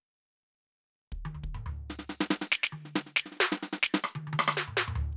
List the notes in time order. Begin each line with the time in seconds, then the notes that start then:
1.12 kick
1.25 high tom
1.34 floor tom
1.43 kick
1.54 mid tom
1.66 floor tom
1.90 snare
1.99 snare
2.09 snare
2.20 snare
2.30 snare
2.41 snare
2.52 snare
2.63 snare
2.72 high tom
2.85 snare
2.95 snare
3.06 snare
3.16 snare
3.26 snare
3.32 snare
3.36 snare
3.40 snare
3.52 snare
3.62 snare
3.83 snare
3.94 snare
4.04 cross-stick
4.15 high tom
4.27 high tom
4.33 high tom
4.39 cross-stick
4.48 cross-stick
4.57 snare
4.67 mid tom
4.77 snare
4.88 mid tom
4.95 floor tom
5.12 kick